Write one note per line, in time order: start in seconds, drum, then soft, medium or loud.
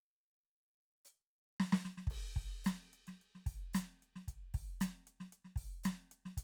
1.05 hi-hat pedal soft
1.60 snare medium
1.73 snare loud
1.85 snare medium
1.98 snare soft
2.07 kick soft
2.07 crash medium
2.36 kick soft
2.36 open hi-hat soft
2.65 snare medium
2.65 closed hi-hat medium
2.65 hi-hat pedal medium
2.84 snare soft
2.93 closed hi-hat soft
3.07 snare soft
3.07 closed hi-hat soft
3.22 closed hi-hat soft
3.35 snare soft
3.46 kick soft
3.46 open hi-hat medium
3.74 closed hi-hat medium
3.74 snare medium
3.74 hi-hat pedal medium
4.02 closed hi-hat soft
4.16 snare soft
4.28 kick soft
4.28 closed hi-hat medium
4.54 kick soft
4.54 open hi-hat medium
4.81 snare medium
4.81 closed hi-hat medium
4.81 hi-hat pedal medium
5.07 closed hi-hat soft
5.20 snare soft
5.33 closed hi-hat soft
5.45 snare soft
5.56 kick soft
5.56 open hi-hat medium
5.84 snare medium
5.84 closed hi-hat medium
5.84 hi-hat pedal medium
6.11 closed hi-hat soft
6.26 snare soft
6.37 kick soft
6.37 closed hi-hat medium